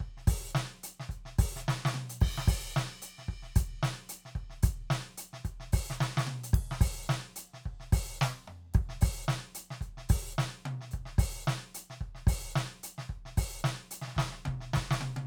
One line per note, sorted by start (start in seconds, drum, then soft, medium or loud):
0.01 kick medium
0.18 snare soft
0.28 open hi-hat loud
0.28 kick loud
0.51 hi-hat pedal medium
0.55 snare loud
0.84 closed hi-hat loud
1.00 snare medium
1.10 closed hi-hat soft
1.10 kick medium
1.26 snare medium
1.39 open hi-hat loud
1.39 kick loud
1.57 snare medium
1.61 hi-hat pedal medium
1.69 snare loud
1.86 snare loud
1.95 high tom loud
2.10 closed hi-hat loud
2.21 kick loud
2.21 crash loud
2.38 snare medium
2.48 open hi-hat loud
2.48 kick loud
2.73 snare loud
2.73 hi-hat pedal medium
3.03 closed hi-hat loud
3.19 snare soft
3.29 kick medium
3.29 closed hi-hat soft
3.43 snare soft
3.56 closed hi-hat loud
3.56 kick loud
3.84 snare loud
4.10 closed hi-hat loud
4.26 snare soft
4.36 kick medium
4.36 closed hi-hat soft
4.50 snare soft
4.63 closed hi-hat loud
4.63 kick loud
4.91 snare loud
5.18 closed hi-hat loud
5.34 snare medium
5.45 closed hi-hat medium
5.45 kick medium
5.61 snare medium
5.73 open hi-hat loud
5.73 kick loud
5.91 snare medium
5.91 hi-hat pedal medium
6.01 snare loud
6.18 snare loud
6.27 high tom loud
6.44 closed hi-hat loud
6.54 kick loud
6.54 crash loud
6.72 snare medium
6.81 open hi-hat loud
6.81 kick loud
7.07 snare loud
7.07 hi-hat pedal medium
7.37 closed hi-hat loud
7.54 snare soft
7.64 kick medium
7.64 closed hi-hat soft
7.81 snare soft
7.93 open hi-hat loud
7.93 kick loud
8.18 snare loud
8.18 hi-hat pedal medium
8.48 mid tom medium
8.74 kick loud
8.74 closed hi-hat medium
8.90 snare medium
9.02 open hi-hat loud
9.02 kick loud
9.25 hi-hat pedal medium
9.29 snare loud
9.55 closed hi-hat loud
9.71 snare medium
9.82 closed hi-hat soft
9.82 kick medium
9.98 snare medium
10.10 open hi-hat loud
10.10 kick loud
10.33 hi-hat pedal medium
10.39 snare loud
10.66 high tom loud
10.81 snare soft
10.92 closed hi-hat medium
10.92 kick medium
11.06 snare medium
11.19 open hi-hat loud
11.19 kick loud
11.44 hi-hat pedal medium
11.48 snare loud
11.75 closed hi-hat loud
11.91 snare medium
12.01 kick medium
12.01 closed hi-hat soft
12.15 snare soft
12.28 open hi-hat loud
12.28 kick loud
12.53 snare loud
12.53 hi-hat pedal medium
12.84 closed hi-hat loud
12.99 snare medium
13.10 kick medium
13.26 snare soft
13.38 open hi-hat loud
13.38 kick loud
13.60 hi-hat pedal medium
13.65 snare loud
13.92 closed hi-hat loud
14.02 snare medium
14.08 snare medium
14.15 kick medium
14.15 snare soft
14.19 snare loud
14.32 snare medium
14.46 kick medium
14.46 high tom loud
14.61 snare soft
14.74 kick medium
14.74 snare loud
14.74 hi-hat pedal medium
14.91 snare loud
15.01 high tom loud
15.17 high tom loud